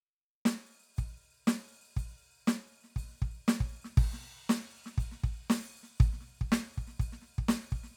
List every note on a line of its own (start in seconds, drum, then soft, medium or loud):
0.45 open hi-hat medium
0.45 snare loud
0.70 open hi-hat soft
0.96 open hi-hat medium
0.96 kick medium
1.47 open hi-hat medium
1.47 snare loud
1.71 open hi-hat soft
1.97 open hi-hat medium
1.97 kick medium
2.22 open hi-hat soft
2.47 open hi-hat medium
2.47 snare loud
2.70 open hi-hat soft
2.84 snare soft
2.90 snare soft
2.96 open hi-hat medium
2.96 kick medium
3.03 snare soft
3.08 snare soft
3.12 snare soft
3.16 snare soft
3.21 kick medium
3.21 open hi-hat soft
3.48 open hi-hat medium
3.48 snare loud
3.60 kick medium
3.71 open hi-hat soft
3.84 snare soft
3.97 kick loud
3.97 crash medium
4.13 snare soft
4.21 snare soft
4.21 open hi-hat soft
4.49 open hi-hat medium
4.49 snare loud
4.75 open hi-hat soft
4.86 snare soft
4.98 open hi-hat medium
4.98 kick medium
5.11 snare soft
5.24 open hi-hat soft
5.24 kick medium
5.50 open hi-hat medium
5.50 snare loud
5.76 open hi-hat soft
5.83 snare soft
6.00 open hi-hat medium
6.00 kick loud
6.13 snare soft
6.21 snare soft
6.27 snare soft
6.41 kick medium
6.52 open hi-hat medium
6.52 snare loud
6.75 open hi-hat soft
6.75 kick medium
6.87 snare soft
6.92 snare soft
7.00 open hi-hat medium
7.00 kick medium
7.12 snare soft
7.22 open hi-hat soft
7.22 snare soft
7.38 kick medium
7.49 open hi-hat medium
7.49 snare loud
7.72 kick medium
7.72 open hi-hat soft
7.83 snare soft
7.91 snare soft